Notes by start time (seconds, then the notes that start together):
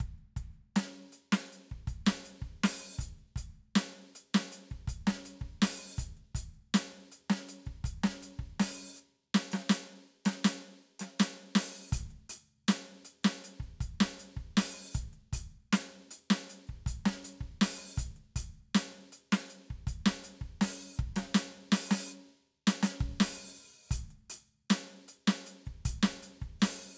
0.00 kick, closed hi-hat
0.18 closed hi-hat
0.36 kick, closed hi-hat
0.54 closed hi-hat
0.76 closed hi-hat, snare
0.94 closed hi-hat
1.12 closed hi-hat
1.32 closed hi-hat, snare
1.52 closed hi-hat
1.70 kick, closed hi-hat
1.87 closed hi-hat, kick
2.06 closed hi-hat, snare
2.25 closed hi-hat
2.42 kick, closed hi-hat
2.63 open hi-hat, snare
2.98 closed hi-hat, kick, hi-hat pedal
3.18 closed hi-hat
3.36 closed hi-hat, kick
3.55 closed hi-hat
3.75 closed hi-hat, snare
4.15 closed hi-hat
4.34 closed hi-hat, snare
4.40 snare
4.52 closed hi-hat
4.70 kick, closed hi-hat
4.87 closed hi-hat, kick
5.07 snare, closed hi-hat
5.25 closed hi-hat
5.41 kick, closed hi-hat
5.62 open hi-hat, snare
5.97 closed hi-hat, kick, hi-hat pedal
6.17 closed hi-hat
6.35 closed hi-hat, kick
6.54 closed hi-hat
6.74 closed hi-hat, snare
7.12 closed hi-hat
7.30 snare, closed hi-hat
7.48 closed hi-hat
7.66 kick, closed hi-hat
7.84 closed hi-hat, kick
8.03 snare
8.22 closed hi-hat
8.39 kick
8.60 open hi-hat, snare
8.96 hi-hat pedal
9.34 snare, closed hi-hat
9.52 snare, closed hi-hat
9.69 closed hi-hat, snare
10.25 snare, closed hi-hat
10.44 closed hi-hat, snare
10.99 snare, closed hi-hat
11.19 closed hi-hat, snare
11.55 open hi-hat, snare
11.91 closed hi-hat, kick, hi-hat pedal
12.10 closed hi-hat
12.29 closed hi-hat
12.49 closed hi-hat
12.68 closed hi-hat, snare
12.86 closed hi-hat
13.05 closed hi-hat
13.23 snare, closed hi-hat
13.44 closed hi-hat
13.60 kick, closed hi-hat
13.80 closed hi-hat, kick
14.00 snare, closed hi-hat
14.18 closed hi-hat, snare
14.36 kick, closed hi-hat
14.57 open hi-hat, snare
14.93 closed hi-hat, kick, hi-hat pedal
15.13 closed hi-hat
15.33 closed hi-hat, kick
15.52 closed hi-hat
15.73 closed hi-hat, snare
16.11 closed hi-hat
16.30 snare
16.49 closed hi-hat
16.67 kick, closed hi-hat
16.86 closed hi-hat, kick
17.05 snare
17.24 closed hi-hat
17.40 kick, closed hi-hat
17.61 open hi-hat, snare
17.96 closed hi-hat, kick, hi-hat pedal
18.16 closed hi-hat
18.36 closed hi-hat, kick
18.54 closed hi-hat
18.75 closed hi-hat, snare
19.12 closed hi-hat
19.32 closed hi-hat, snare
19.49 closed hi-hat
19.67 kick, closed hi-hat
19.87 closed hi-hat, kick
20.06 snare, closed hi-hat
20.24 closed hi-hat
20.41 kick, closed hi-hat
20.61 open hi-hat, snare
20.97 kick, hi-hat pedal
21.16 snare, closed hi-hat
21.34 open hi-hat, snare
21.72 open hi-hat, snare
21.91 open hi-hat, snare
22.10 hi-hat pedal
22.67 closed hi-hat, snare
22.83 closed hi-hat, snare
23.00 kick
23.20 open hi-hat, snare
23.89 closed hi-hat, kick, hi-hat pedal
24.10 closed hi-hat
24.30 closed hi-hat
24.48 closed hi-hat
24.70 closed hi-hat, snare
24.90 closed hi-hat
25.08 closed hi-hat
25.27 snare, closed hi-hat
25.46 closed hi-hat
25.66 kick, closed hi-hat
25.85 closed hi-hat, kick
26.03 snare
26.22 closed hi-hat
26.41 kick, closed hi-hat
26.59 open hi-hat, snare, hi-hat pedal